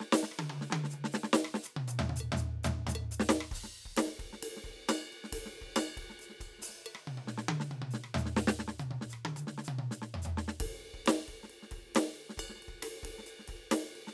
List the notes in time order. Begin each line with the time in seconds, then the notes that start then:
0.01 snare
0.13 snare, hi-hat pedal
0.24 snare
0.32 cross-stick
0.40 high tom
0.50 high tom
0.62 snare
0.66 hi-hat pedal
0.71 snare, high tom
0.85 snare
0.91 hi-hat pedal, high tom
1.05 snare
1.13 snare, hi-hat pedal
1.24 snare
1.34 snare, hi-hat pedal
1.45 cross-stick
1.55 snare
1.64 cross-stick, hi-hat pedal
1.77 mid tom
1.88 hi-hat pedal, mid tom
2.00 floor tom
2.10 mid tom
2.17 hi-hat pedal
2.21 percussion
2.33 floor tom
2.37 hi-hat pedal
2.64 hi-hat pedal, floor tom
2.87 hi-hat pedal, floor tom
2.96 percussion
3.12 hi-hat pedal
3.20 snare
3.30 snare, hi-hat pedal
3.41 cross-stick
3.52 kick, hi-hat pedal, crash
3.64 kick, snare
3.75 kick
3.86 kick
3.91 kick
3.97 snare, hi-hat pedal, ride
4.07 snare
4.20 kick, ride
4.26 kick
4.34 snare
4.43 hi-hat pedal, ride
4.57 snare
4.65 kick, ride
4.70 kick
4.89 snare, hi-hat pedal, ride bell
5.13 ride
5.25 snare
5.33 kick, hi-hat pedal, ride
5.39 kick
5.46 snare
5.56 ride
5.62 kick
5.67 kick
5.77 snare, hi-hat pedal, ride bell
5.98 kick, ride
6.03 kick
6.10 snare
6.20 hi-hat pedal, ride
6.30 snare
6.41 kick, snare, ride bell
6.59 snare, hi-hat pedal
6.64 ride bell
6.69 snare
6.73 snare
6.87 percussion
6.96 cross-stick
7.08 mid tom
7.28 snare
7.38 snare
7.49 high tom
7.61 snare
7.72 mid tom
7.83 mid tom
7.91 snare, hi-hat pedal
8.05 cross-stick
8.15 hi-hat pedal, floor tom
8.26 snare
8.37 snare
8.48 snare, hi-hat pedal
8.60 snare
8.69 snare
8.79 hi-hat pedal, mid tom
8.92 mid tom
9.02 snare
9.10 cross-stick, hi-hat pedal
9.26 high tom
9.37 hi-hat pedal, high tom
9.48 snare
9.59 snare
9.65 hi-hat pedal
9.69 mid tom
9.79 mid tom
9.92 snare, hi-hat pedal
10.03 snare
10.15 floor tom
10.23 floor tom, hi-hat pedal
10.38 snare
10.49 snare
10.61 kick, ride
10.79 kick
10.94 kick
11.07 snare, ride
11.29 kick, ride
11.44 snare
11.50 hi-hat pedal, ride
11.63 snare
11.72 kick, ride
11.95 snare, hi-hat pedal, ride
12.17 ride
12.30 snare
12.38 kick, hi-hat pedal, ride bell
12.43 kick
12.50 snare
12.56 snare
12.63 ride
12.69 kick
12.83 cross-stick, hi-hat pedal, ride
13.04 kick, ride
13.09 kick
13.19 snare
13.27 hi-hat pedal, ride
13.40 snare
13.49 kick, ride
13.55 kick
13.72 snare, hi-hat pedal, ride
13.96 ride
14.08 snare